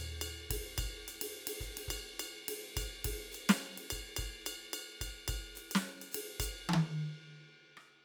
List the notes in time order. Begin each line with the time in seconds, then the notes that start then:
0.22 ride bell
0.50 kick, hi-hat pedal, ride
0.78 kick, ride bell
0.84 kick
1.08 hi-hat pedal, ride bell
1.22 ride
1.47 ride
1.61 kick, hi-hat pedal
1.77 ride
1.88 kick, ride bell
2.20 hi-hat pedal, ride bell
2.48 ride
2.77 kick, hi-hat pedal, ride bell
2.82 kick
2.85 kick
3.05 kick, ride
3.32 hi-hat pedal, ride bell
3.49 snare, ride bell
3.78 ride
3.91 kick, hi-hat pedal, ride bell
4.17 kick, ride bell
4.46 hi-hat pedal, ride bell
4.73 ride bell
5.01 kick, hi-hat pedal, ride bell
5.28 kick, ride bell
5.34 kick
5.55 hi-hat pedal, ride
5.71 snare, ride bell
6.02 ride bell
6.12 hi-hat pedal, ride
6.40 kick, hi-hat pedal, ride bell
6.45 kick
6.69 high tom
6.74 high tom
7.77 cross-stick
7.88 cross-stick